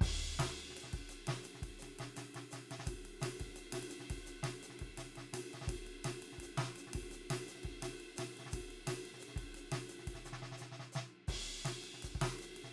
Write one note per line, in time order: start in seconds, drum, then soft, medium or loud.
0.01 kick loud
0.01 hi-hat pedal medium
0.01 ride loud
0.39 snare medium
0.39 hi-hat pedal medium
0.39 ride loud
0.46 snare soft
0.60 ride medium
0.70 snare soft
0.76 hi-hat pedal medium
0.76 ride medium
0.83 snare soft
0.93 kick soft
0.93 ride medium
1.09 hi-hat pedal medium
1.09 ride medium
1.27 snare medium
1.27 ride loud
1.43 hi-hat pedal medium
1.43 ride medium
1.55 snare soft
1.62 kick soft
1.62 ride medium
1.79 snare soft
1.79 hi-hat pedal medium
1.79 ride medium
1.99 snare medium
1.99 ride medium
2.16 snare soft
2.16 hi-hat pedal medium
2.16 ride medium
2.35 snare soft
2.35 ride medium
2.51 snare soft
2.51 hi-hat pedal medium
2.51 ride medium
2.71 snare soft
2.71 ride medium
2.79 snare soft
2.86 kick medium
2.86 hi-hat pedal medium
2.86 ride medium
3.05 ride medium
3.21 snare medium
3.21 hi-hat pedal medium
3.21 ride loud
3.40 kick soft
3.40 ride medium
3.56 hi-hat pedal medium
3.56 ride medium
3.72 snare medium
3.72 ride loud
3.83 ride medium
3.90 hi-hat pedal medium
3.90 ride medium
4.00 snare soft
4.10 kick soft
4.10 ride medium
4.26 hi-hat pedal medium
4.26 ride medium
4.43 snare medium
4.43 ride loud
4.63 hi-hat pedal medium
4.63 ride medium
4.70 snare soft
4.79 kick soft
4.79 ride medium
4.98 snare soft
4.98 hi-hat pedal medium
4.98 ride medium
5.16 snare soft
5.16 ride medium
5.33 snare soft
5.33 hi-hat pedal medium
5.33 ride loud
5.53 snare soft
5.53 ride medium
5.61 snare soft
5.67 kick medium
5.67 hi-hat pedal medium
5.67 ride loud
5.87 ride medium
6.04 snare medium
6.04 hi-hat pedal medium
6.04 ride loud
6.22 ride medium
6.32 snare soft
6.38 kick soft
6.38 ride medium
6.42 hi-hat pedal medium
6.57 snare medium
6.57 ride loud
6.64 snare soft
6.76 hi-hat pedal medium
6.76 ride medium
6.87 snare soft
6.93 kick soft
6.93 ride loud
7.11 hi-hat pedal medium
7.11 ride medium
7.30 snare medium
7.30 ride loud
7.48 hi-hat pedal medium
7.48 ride medium
7.55 snare soft
7.63 kick soft
7.63 ride medium
7.82 snare medium
7.82 hi-hat pedal medium
7.82 ride loud
8.00 ride medium
8.16 snare medium
8.16 hi-hat pedal medium
8.16 ride loud
8.37 snare soft
8.37 ride medium
8.46 snare soft
8.51 kick soft
8.51 hi-hat pedal medium
8.51 ride loud
8.71 ride soft
8.87 snare medium
8.87 hi-hat pedal medium
8.87 ride loud
9.05 ride medium
9.14 snare soft
9.20 hi-hat pedal medium
9.20 ride medium
9.28 snare soft
9.36 kick medium
9.36 ride medium
9.54 hi-hat pedal medium
9.54 ride medium
9.72 snare medium
9.72 ride loud
9.89 hi-hat pedal medium
9.89 ride medium
9.99 snare soft
10.07 kick soft
10.07 ride medium
10.14 snare soft
10.25 snare soft
10.25 hi-hat pedal medium
10.33 snare soft
10.42 snare soft
10.52 snare soft
10.58 snare soft
10.58 hi-hat pedal medium
10.72 snare soft
10.79 snare soft
10.92 snare medium
10.92 hi-hat pedal medium
11.28 kick medium
11.28 hi-hat pedal medium
11.28 ride loud
11.65 snare medium
11.65 hi-hat pedal medium
11.65 ride loud
11.84 ride medium
11.94 snare soft
12.02 kick soft
12.02 hi-hat pedal medium
12.02 ride medium
12.15 kick soft
12.21 snare medium
12.21 ride loud
12.39 hi-hat pedal medium
12.39 ride medium
12.56 ride medium
12.64 snare soft